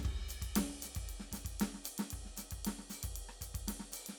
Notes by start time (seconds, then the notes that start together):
0.01 snare, ride
0.05 kick
0.18 snare
0.29 hi-hat pedal, ride
0.42 kick, ride
0.56 snare, ride
0.70 snare
0.82 snare, hi-hat pedal, ride
0.95 kick, ride
1.09 ride
1.20 snare
1.32 kick, snare, hi-hat pedal, ride
1.45 kick, ride
1.60 snare, ride
1.74 snare
1.85 hi-hat pedal, ride
1.98 snare, ride
2.11 kick, ride
2.25 snare
2.37 snare, hi-hat pedal, ride
2.51 kick, ride
2.65 snare, ride
2.79 snare
2.90 snare, hi-hat pedal
3.03 kick, ride
3.16 ride
3.29 cross-stick
3.41 kick, hi-hat pedal, ride
3.55 kick, ride
3.68 snare, ride
3.80 snare
3.92 hi-hat pedal, ride
4.06 snare, ride